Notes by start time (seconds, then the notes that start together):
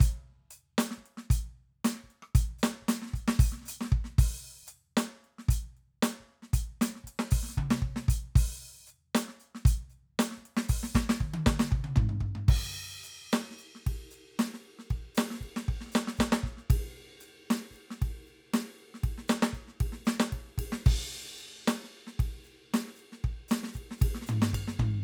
0.01 closed hi-hat, kick
0.51 hi-hat pedal, open hi-hat
0.79 closed hi-hat, snare
0.91 snare
0.98 kick
1.06 closed hi-hat
1.18 snare
1.31 closed hi-hat, kick
1.85 closed hi-hat, snare
2.04 kick
2.11 closed hi-hat
2.23 cross-stick
2.35 open hi-hat, kick
2.59 hi-hat pedal
2.64 closed hi-hat, snare
2.82 kick
2.89 closed hi-hat, snare
3.02 snare
3.06 snare
3.10 kick, snare
3.16 closed hi-hat
3.28 snare
3.40 open hi-hat, kick
3.53 snare
3.57 snare
3.61 snare
3.63 snare
3.65 snare, hi-hat pedal
3.68 closed hi-hat, snare
3.81 snare
3.85 snare
3.92 kick
4.05 snare
4.19 open hi-hat, kick, hi-hat pedal
4.68 closed hi-hat, hi-hat pedal
4.97 closed hi-hat, snare
5.25 closed hi-hat
5.39 snare
5.49 closed hi-hat, kick
5.77 closed hi-hat
6.03 closed hi-hat, snare
6.21 kick
6.43 snare
6.54 closed hi-hat, kick
6.82 closed hi-hat, snare
6.96 snare
7.04 kick, closed hi-hat
7.20 snare
7.31 open hi-hat, kick
7.43 snare
7.49 snare
7.53 snare, hi-hat pedal
7.58 kick, mid tom
7.71 snare
7.82 kick, snare
7.97 snare
8.09 closed hi-hat, kick
8.36 open hi-hat, kick
8.87 hi-hat pedal
9.15 closed hi-hat, snare
9.29 snare
9.40 closed hi-hat
9.55 snare
9.66 closed hi-hat, kick
9.90 hi-hat pedal
10.20 closed hi-hat, snare
10.32 snare
10.35 kick, snare
10.46 closed hi-hat
10.57 snare
10.69 open hi-hat, kick
10.84 snare
10.95 kick, snare, hi-hat pedal
11.10 snare
11.19 kick, hi-hat pedal, high tom
11.34 high tom
11.47 kick, snare
11.60 snare
11.72 kick, mid tom
11.85 mid tom
11.96 kick, floor tom
12.10 floor tom
12.21 kick, floor tom
12.36 floor tom
12.45 kick
12.49 kick, crash
13.04 hi-hat pedal, ride
13.33 snare, ride
13.51 snare
13.59 hi-hat pedal, ride
13.76 snare
13.87 kick, ride
14.11 hi-hat pedal, ride
14.40 snare, ride
14.54 snare
14.64 ride
14.79 snare
14.91 kick, ride bell
15.15 snare, hi-hat pedal, ride
15.31 snare
15.34 snare
15.39 kick, hi-hat pedal
15.43 ride
15.57 snare
15.69 kick, ride
15.81 snare
15.87 snare
15.91 snare, hi-hat pedal
15.96 snare
16.08 snare
16.17 kick, snare, hi-hat pedal
16.33 snare
16.44 kick, snare
16.58 snare
16.70 kick, hi-hat pedal, ride
17.21 hi-hat pedal, ride
17.51 snare, ride
17.71 kick, hi-hat pedal
17.77 ride
17.91 snare
18.02 kick, ride
18.26 hi-hat pedal, ride
18.54 snare, ride
18.79 ride
18.95 snare
19.04 kick, ride
19.18 snare
19.29 snare, hi-hat pedal
19.43 snare
19.53 kick, ride bell
19.68 snare
19.81 kick, ride
19.93 snare
20.06 snare, hi-hat pedal
20.20 snare
20.33 kick, ride
20.47 snare
20.58 kick, ride
20.73 snare
20.84 kick, hi-hat pedal, ride
21.38 hi-hat pedal
21.68 snare, ride
21.84 snare
22.07 snare
22.20 kick, ride
22.44 hi-hat pedal, ride
22.74 snare, ride
22.88 snare
22.96 hi-hat pedal, ride
23.13 snare
23.24 kick, ride bell
23.49 snare, hi-hat pedal, ride
23.64 snare
23.67 snare
23.73 kick, snare, hi-hat pedal
23.77 ride
23.91 snare
23.99 kick, hi-hat pedal, ride
24.15 snare
24.22 snare
24.27 floor tom, hi-hat pedal
24.42 snare
24.54 kick, ride bell
24.68 snare
24.76 kick, floor tom, hi-hat pedal